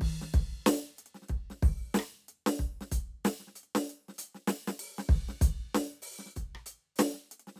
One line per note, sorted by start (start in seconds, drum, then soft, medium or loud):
0.01 kick medium
0.01 crash medium
0.22 snare medium
0.34 kick loud
0.34 closed hi-hat medium
0.66 snare loud
0.66 hi-hat pedal soft
0.89 snare soft
0.97 closed hi-hat medium
0.97 hi-hat pedal soft
1.06 closed hi-hat soft
1.15 snare soft
1.22 snare soft
1.29 kick medium
1.29 closed hi-hat soft
1.50 snare soft
1.63 kick loud
1.63 open hi-hat medium
1.94 snare loud
1.99 cross-stick medium
2.28 closed hi-hat medium
2.46 snare loud
2.59 kick medium
2.81 snare medium
2.92 closed hi-hat medium
2.92 kick medium
3.25 snare loud
3.25 hi-hat pedal medium
3.40 snare soft
3.47 snare soft
3.56 closed hi-hat medium
3.63 open hi-hat soft
3.75 snare loud
3.89 closed hi-hat medium
4.09 snare soft
4.14 hi-hat pedal soft
4.18 closed hi-hat loud
4.35 snare soft
4.48 snare loud
4.48 hi-hat pedal soft
4.68 snare medium
4.79 open hi-hat medium
4.98 snare medium
5.09 kick loud
5.09 crash soft
5.29 snare soft
5.41 closed hi-hat loud
5.41 kick loud
5.75 snare loud
5.75 hi-hat pedal soft
5.86 snare soft
6.02 open hi-hat medium
6.11 open hi-hat soft
6.19 snare soft
6.26 snare soft
6.26 hi-hat pedal soft
6.36 closed hi-hat soft
6.36 kick medium
6.55 cross-stick medium
6.66 closed hi-hat medium
6.96 snare loud
6.96 closed hi-hat medium
6.96 hi-hat pedal medium
7.14 snare soft
7.31 closed hi-hat medium
7.40 closed hi-hat soft
7.47 snare soft
7.56 snare soft